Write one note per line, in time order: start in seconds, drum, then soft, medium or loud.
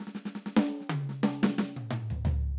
0.00 snare soft
0.07 snare soft
0.15 snare medium
0.25 snare medium
0.35 snare medium
0.46 snare medium
0.56 snare loud
0.80 snare soft
0.90 high tom loud
1.09 snare soft
1.23 snare loud
1.43 snare loud
1.58 snare loud
1.76 mid tom loud
1.91 mid tom loud
2.10 floor tom medium
2.25 floor tom loud